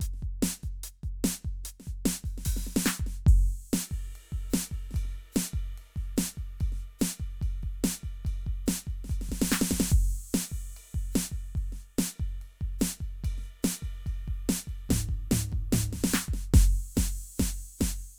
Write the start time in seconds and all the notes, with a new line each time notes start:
0.01 closed hi-hat, kick
0.14 snare
0.23 kick, closed hi-hat
0.43 closed hi-hat, snare
0.64 kick, closed hi-hat
0.84 closed hi-hat
1.04 kick, closed hi-hat
1.25 closed hi-hat, snare
1.45 kick, closed hi-hat
1.65 closed hi-hat, snare
1.81 snare
1.86 kick, closed hi-hat
2.06 closed hi-hat, snare
2.25 kick, open hi-hat
2.38 snare
2.46 open hi-hat, kick
2.57 snare
2.67 snare
2.77 snare
2.86 snare
3.00 kick
3.07 snare
3.27 kick, crash
3.74 snare, hi-hat pedal, ride
3.92 kick, ride
4.16 ride
4.33 kick
4.50 snare, hi-hat pedal
4.56 ride
4.72 kick, ride
4.91 kick, snare
4.97 ride bell
5.05 snare
5.09 snare
5.17 ride
5.33 snare, hi-hat pedal
5.38 ride bell
5.54 kick, ride
5.78 ride
5.97 kick, snare, ride
6.17 snare, hi-hat pedal, ride bell
6.38 kick, ride
6.61 kick, ride bell
6.73 snare
6.80 ride
7.00 snare, hi-hat pedal, ride bell
7.21 kick, ride
7.42 kick, ride bell
7.64 kick, ride
7.84 snare, hi-hat pedal, ride bell
8.04 kick, ride
8.26 kick, ride bell
8.47 kick, ride
8.67 snare, hi-hat pedal, ride bell
8.88 kick, ride
9.05 snare
9.10 kick, ride bell
9.22 snare
9.30 kick, snare
9.42 snare
9.48 snare, hi-hat pedal
9.62 snare
9.71 kick, snare
9.81 snare
9.91 kick, crash
10.34 snare, hi-hat pedal, ride bell
10.52 kick
10.77 ride bell
10.95 kick, ride
11.12 snare, hi-hat pedal
11.18 ride bell
11.32 kick
11.37 ride
11.56 kick, ride
11.73 snare, ride
11.99 snare, hi-hat pedal, ride bell
12.20 kick, ride
12.42 ride
12.62 kick, ride
12.79 snare, hi-hat pedal, ride bell
13.01 kick, ride
13.25 kick, ride bell
13.38 snare
13.45 ride
13.63 snare, hi-hat pedal, ride bell
13.83 kick, ride
14.07 kick, ride bell
14.29 kick, ride
14.50 snare, ride bell
14.68 kick, ride
14.90 kick, snare, floor tom
15.10 kick
15.32 snare, floor tom
15.52 kick, floor tom
15.73 snare, floor tom
15.78 kick
15.93 kick, snare
16.04 snare
16.09 hi-hat pedal
16.14 snare
16.29 kick
16.34 snare
16.54 kick, snare, crash
16.96 kick, snare, hi-hat pedal, crash
17.38 kick, snare, hi-hat pedal, crash
17.61 crash
17.79 kick, snare, hi-hat pedal, crash
18.02 crash